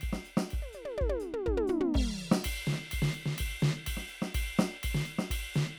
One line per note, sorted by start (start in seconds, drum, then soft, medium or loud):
0.01 kick soft
0.01 ride bell medium
0.09 kick soft
0.09 snare medium
0.25 hi-hat pedal medium
0.25 ride soft
0.37 snare medium
0.51 kick soft
0.51 ride medium
0.60 kick soft
0.60 high tom soft
0.73 hi-hat pedal medium
0.73 high tom medium
0.85 high tom medium
0.97 kick soft
0.97 high tom loud
1.08 kick soft
1.08 high tom loud
1.20 hi-hat pedal medium
1.20 mid tom soft
1.33 mid tom loud
1.46 kick soft
1.46 mid tom loud
1.54 kick soft
1.54 mid tom loud
1.67 floor tom loud
1.67 hi-hat pedal medium
1.80 floor tom loud
1.94 kick medium
1.94 crash loud
2.02 kick soft
2.07 kick soft
2.18 hi-hat pedal medium
2.32 snare loud
2.44 kick soft
2.44 ride bell loud
2.65 snare medium
2.65 hi-hat pedal medium
2.73 snare soft
2.87 hi-hat pedal soft
2.91 kick soft
2.91 ride bell loud
3.02 snare medium
3.12 hi-hat pedal medium
3.12 ride soft
3.26 snare medium
3.38 kick soft
3.38 ride bell loud
3.46 kick soft
3.60 snare loud
3.60 hi-hat pedal medium
3.82 hi-hat pedal soft
3.86 kick soft
3.86 ride bell loud
3.93 kick soft
3.93 snare soft
4.08 hi-hat pedal medium
4.08 ride soft
4.22 snare medium
4.35 kick soft
4.35 ride bell loud
4.42 kick soft
4.58 snare loud
4.58 hi-hat pedal medium
4.83 kick soft
4.83 ride bell loud
4.90 kick soft
4.95 snare medium
5.06 hi-hat pedal medium
5.06 ride soft
5.19 snare medium
5.31 kick soft
5.31 ride bell loud
5.36 kick soft
5.54 snare medium
5.54 hi-hat pedal medium